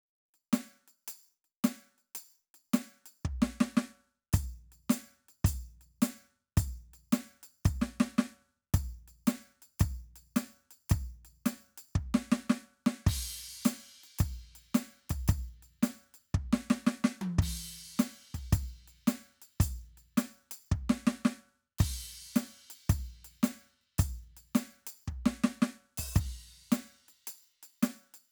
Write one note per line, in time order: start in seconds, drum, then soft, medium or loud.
0.34 percussion soft
0.53 snare loud
0.53 percussion loud
0.88 percussion soft
1.08 percussion loud
1.44 percussion soft
1.64 snare loud
1.64 percussion loud
1.98 percussion soft
2.15 percussion loud
2.54 percussion soft
2.74 snare loud
2.74 percussion loud
3.06 percussion medium
3.25 kick medium
3.42 snare loud
3.61 snare loud
3.77 snare loud
4.33 kick loud
4.33 percussion loud
4.72 percussion soft
4.90 snare loud
4.90 percussion loud
5.29 percussion soft
5.45 kick loud
5.45 percussion loud
5.81 percussion soft
6.02 snare loud
6.02 percussion loud
6.57 kick loud
6.57 percussion loud
6.94 percussion soft
7.12 snare loud
7.12 percussion loud
7.43 percussion medium
7.65 kick loud
7.65 percussion medium
7.82 snare loud
8.00 snare loud
8.18 snare loud
8.74 kick loud
8.74 percussion loud
9.08 percussion soft
9.27 snare loud
9.27 percussion loud
9.62 percussion medium
9.80 kick loud
9.80 percussion loud
10.16 percussion medium
10.36 snare loud
10.36 percussion loud
10.71 percussion medium
10.90 kick loud
10.90 percussion loud
11.25 percussion soft
11.46 snare loud
11.46 percussion loud
11.78 percussion medium
11.95 kick loud
12.14 snare loud
12.32 snare loud
12.50 snare loud
12.86 snare loud
13.07 kick loud
13.07 crash loud
13.65 snare loud
13.65 percussion loud
14.04 percussion soft
14.19 kick loud
14.19 percussion loud
14.55 percussion medium
14.75 snare loud
14.75 percussion loud
15.10 kick medium
15.10 percussion loud
15.28 kick loud
15.28 percussion loud
15.63 percussion soft
15.83 snare loud
15.83 percussion loud
16.14 percussion medium
16.34 kick loud
16.53 snare loud
16.70 snare loud
16.87 snare loud
17.04 snare loud
17.21 high tom loud
17.39 kick loud
17.39 crash loud
17.99 snare loud
17.99 percussion loud
18.34 kick medium
18.34 percussion medium
18.53 kick loud
18.53 percussion loud
18.88 percussion soft
19.07 snare loud
19.07 percussion loud
19.42 percussion medium
19.60 kick loud
19.60 percussion loud
19.97 percussion soft
20.17 snare loud
20.17 percussion loud
20.51 percussion loud
20.72 kick loud
20.90 snare loud
21.07 snare loud
21.25 snare loud
21.79 kick loud
21.79 percussion loud
21.79 crash loud
22.36 snare loud
22.36 percussion loud
22.70 percussion medium
22.90 kick loud
22.90 percussion loud
23.25 percussion medium
23.43 snare loud
23.43 percussion loud
23.81 percussion soft
23.98 kick loud
23.98 percussion loud
24.37 percussion medium
24.55 snare loud
24.55 percussion loud
24.87 percussion loud
25.08 kick medium
25.26 snare loud
25.44 snare loud
25.62 snare loud
25.98 kick medium
25.98 percussion loud
26.15 kick loud
26.15 percussion loud
26.15 crash medium
26.72 snare loud
26.72 percussion loud
27.08 percussion soft
27.27 percussion loud
27.63 percussion medium
27.83 snare loud
27.83 percussion loud
28.14 percussion medium